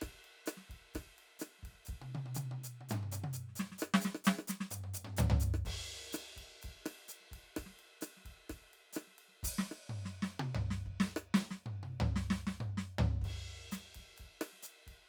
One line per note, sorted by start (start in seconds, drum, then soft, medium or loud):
0.01 kick soft
0.01 cross-stick medium
0.01 hi-hat pedal soft
0.01 ride medium
0.07 kick soft
0.24 ride soft
0.46 cross-stick medium
0.46 hi-hat pedal medium
0.46 ride medium
0.57 snare soft
0.69 kick soft
0.69 ride soft
0.75 kick soft
0.94 kick soft
0.94 cross-stick medium
0.94 hi-hat pedal soft
0.94 ride medium
1.00 kick soft
1.18 ride soft
1.39 cross-stick medium
1.39 hi-hat pedal medium
1.39 ride medium
1.59 snare soft
1.63 kick soft
1.63 ride soft
1.68 kick soft
1.68 snare soft
1.85 kick soft
1.85 hi-hat pedal medium
1.85 ride medium
2.02 high tom medium
2.15 high tom medium
2.26 high tom medium
2.34 hi-hat pedal loud
2.34 high tom medium
2.51 high tom medium
2.63 hi-hat pedal medium
2.81 high tom soft
2.89 hi-hat pedal medium
2.89 mid tom loud
3.03 high tom soft
3.12 hi-hat pedal medium
3.12 mid tom medium
3.24 high tom medium
3.33 hi-hat pedal medium
3.38 mid tom soft
3.49 snare soft
3.56 snare medium
3.56 hi-hat pedal medium
3.71 snare soft
3.78 cross-stick medium
3.78 hi-hat pedal medium
3.94 snare loud
4.01 hi-hat pedal medium
4.05 snare medium
4.15 cross-stick medium
4.24 snare loud
4.24 hi-hat pedal loud
4.39 cross-stick medium
4.47 snare medium
4.47 hi-hat pedal loud
4.60 snare medium
4.71 hi-hat pedal loud
4.71 mid tom medium
4.84 mid tom medium
4.94 hi-hat pedal loud
4.94 mid tom soft
5.05 mid tom medium
5.17 hi-hat pedal loud
5.17 floor tom loud
5.30 floor tom loud
5.40 floor tom medium
5.40 hi-hat pedal medium
5.54 cross-stick medium
5.65 kick soft
5.65 hi-hat pedal soft
5.65 ride loud
6.13 cross-stick medium
6.13 hi-hat pedal medium
6.13 ride medium
6.36 kick soft
6.36 ride medium
6.41 kick soft
6.62 kick soft
6.62 hi-hat pedal soft
6.62 ride medium
6.86 cross-stick medium
6.86 ride medium
7.08 hi-hat pedal medium
7.08 ride soft
7.20 snare soft
7.31 kick soft
7.31 ride medium
7.36 kick soft
7.56 kick soft
7.56 cross-stick medium
7.56 hi-hat pedal soft
7.56 ride medium
7.63 kick soft
7.63 snare soft
7.79 ride soft
8.01 cross-stick medium
8.01 hi-hat pedal medium
8.01 ride medium
8.17 snare soft
8.25 kick soft
8.25 ride soft
8.30 kick soft
8.49 kick soft
8.49 cross-stick medium
8.49 hi-hat pedal soft
8.49 ride medium
8.55 kick soft
8.73 ride soft
8.93 cross-stick medium
8.93 hi-hat pedal medium
8.93 ride medium
9.07 snare soft
9.18 ride medium
9.28 snare soft
9.43 kick soft
9.43 hi-hat pedal loud
9.49 kick soft
9.58 snare medium
9.71 cross-stick medium
9.89 mid tom medium
10.05 snare medium
10.22 snare medium
10.39 high tom medium
10.55 floor tom medium
10.70 snare medium
10.86 kick soft
10.91 kick soft
11.00 snare loud
11.16 cross-stick medium
11.34 snare loud
11.51 snare medium
11.66 mid tom medium
11.83 open hi-hat soft
11.83 high tom medium
12.00 floor tom loud
12.16 snare medium
12.30 snare loud
12.47 snare medium
12.60 mid tom medium
12.77 snare medium
12.98 floor tom loud
13.21 kick soft
13.21 ride medium
13.30 cross-stick soft
13.71 snare medium
13.71 hi-hat pedal medium
13.71 ride medium
13.95 kick soft
13.95 snare soft
13.95 ride medium
14.00 kick soft
14.12 snare soft
14.16 kick soft
14.16 hi-hat pedal soft
14.16 ride medium
14.24 kick soft
14.41 cross-stick medium
14.41 ride medium
14.53 snare soft
14.63 snare soft
14.63 hi-hat pedal medium
14.63 ride soft
14.87 kick soft
14.87 ride soft
14.91 kick soft